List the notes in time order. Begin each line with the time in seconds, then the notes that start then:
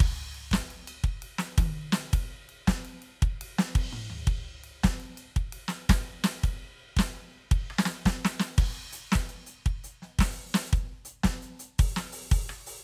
0.01 kick, crash
0.35 ride
0.52 kick, snare, hi-hat pedal
0.71 ride
0.88 ride bell
1.04 kick
1.23 ride
1.39 snare
1.58 kick, high tom, ride
1.93 snare, ride
2.12 kick, hi-hat pedal, ride
2.50 ride
2.68 kick, snare
2.86 ride
3.03 ride
3.21 kick, ride
3.42 ride
3.59 snare
3.76 kick, ride
3.93 mid tom
4.11 floor tom
4.28 kick, ride
4.65 ride
4.84 kick, snare, hi-hat pedal
5.01 ride
5.18 ride bell
5.37 kick
5.53 ride
5.69 snare
5.90 kick, snare, ride
6.25 snare, ride
6.44 kick, hi-hat pedal, ride
6.80 ride
6.97 kick, snare
7.16 ride
7.34 ride
7.51 kick, ride
7.71 cross-stick
7.79 snare
7.86 snare
8.06 kick, snare
8.25 snare
8.40 snare
8.58 kick, hi-hat pedal, crash
8.93 closed hi-hat
9.13 kick, snare
9.30 closed hi-hat
9.47 closed hi-hat
9.67 kick
9.85 closed hi-hat
10.03 snare
10.19 open hi-hat, kick, snare
10.55 open hi-hat, snare
10.70 kick, hi-hat pedal
10.76 closed hi-hat
11.06 closed hi-hat
11.24 kick, snare
11.43 closed hi-hat
11.60 closed hi-hat
11.79 open hi-hat, kick
11.97 snare
12.13 open hi-hat
12.32 open hi-hat, kick
12.50 cross-stick
12.67 open hi-hat
12.81 hi-hat pedal